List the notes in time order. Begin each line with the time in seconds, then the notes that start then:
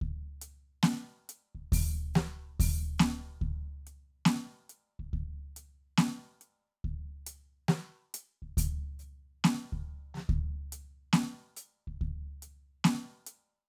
0.02 kick, snare, crash
0.42 closed hi-hat
0.83 snare
1.29 closed hi-hat
1.55 kick
1.72 open hi-hat, kick
2.14 snare, hi-hat pedal
2.60 open hi-hat, kick
2.98 snare, hi-hat pedal
3.42 kick
3.87 closed hi-hat
4.26 snare
4.70 closed hi-hat
4.99 kick
5.13 kick, snare, crash, ride
5.57 closed hi-hat
5.98 snare
6.41 closed hi-hat
6.84 kick
7.27 closed hi-hat
7.69 snare
8.14 closed hi-hat
8.42 kick
8.57 closed hi-hat, kick
8.99 hi-hat pedal
9.44 snare
9.73 kick
10.14 snare
10.17 snare
10.26 kick
10.29 kick
10.73 closed hi-hat
11.13 snare
11.57 closed hi-hat
11.88 kick
12.01 kick, snare, crash, ride
12.43 closed hi-hat
12.84 snare
13.27 closed hi-hat